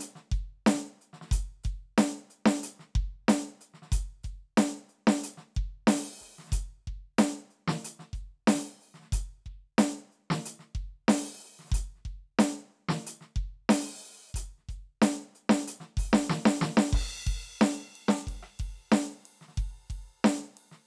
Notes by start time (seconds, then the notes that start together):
0.01 closed hi-hat
0.16 snare
0.32 closed hi-hat, kick
0.67 closed hi-hat, snare
0.74 snare
1.02 closed hi-hat
1.14 snare
1.22 snare
1.26 snare
1.32 closed hi-hat, kick
1.64 closed hi-hat, kick
1.98 closed hi-hat, snare
2.31 closed hi-hat
2.46 snare
2.64 closed hi-hat
2.80 snare
2.96 kick, closed hi-hat
3.29 closed hi-hat, snare
3.61 closed hi-hat
3.74 snare
3.83 snare
3.86 snare
3.89 closed hi-hat, kick, snare
4.24 closed hi-hat, kick
4.58 closed hi-hat, snare
4.89 closed hi-hat
5.08 snare
5.24 closed hi-hat
5.38 snare
5.55 kick, closed hi-hat
5.88 open hi-hat, snare
5.95 snare
6.21 open hi-hat, kick
6.39 snare
6.44 snare
6.47 snare, hi-hat pedal
6.50 closed hi-hat, kick, snare
6.88 kick, closed hi-hat
7.19 closed hi-hat, snare
7.33 snare
7.51 closed hi-hat
7.68 snare
7.85 closed hi-hat
8.00 snare
8.14 closed hi-hat, kick
8.48 open hi-hat, snare
8.55 snare
8.81 open hi-hat
8.95 snare
9.00 snare
9.03 snare
9.13 closed hi-hat, kick
9.46 kick, closed hi-hat
9.79 closed hi-hat, snare
10.12 closed hi-hat
10.31 snare
10.46 closed hi-hat
10.60 snare
10.75 kick, closed hi-hat
11.09 open hi-hat, snare
11.44 open hi-hat
11.60 snare
11.65 snare, hi-hat pedal
11.68 snare
11.71 kick, snare
11.72 closed hi-hat, snare
11.96 snare
12.06 kick, closed hi-hat
12.39 closed hi-hat, snare
12.89 snare
13.07 closed hi-hat
13.21 snare
13.36 kick, closed hi-hat
13.70 open hi-hat, snare
14.03 open hi-hat
14.30 hi-hat pedal
14.35 closed hi-hat, kick
14.58 snare
14.69 closed hi-hat, kick
15.02 closed hi-hat, snare
15.36 closed hi-hat
15.50 snare
15.68 closed hi-hat
15.81 snare
15.97 open hi-hat, kick
16.13 snare
16.26 snare, hi-hat pedal
16.46 snare
16.57 hi-hat pedal
16.62 snare
16.78 snare
16.93 kick, crash
17.16 snare
17.27 kick, ride
17.62 snare, ride
17.96 ride
18.09 snare
18.27 kick, ride
18.43 cross-stick
18.60 kick, ride
18.92 snare, ride
19.26 ride
19.42 snare
19.49 snare
19.58 kick, ride
19.90 kick, ride
20.25 snare, ride
20.35 snare
20.39 snare
20.57 ride
20.72 snare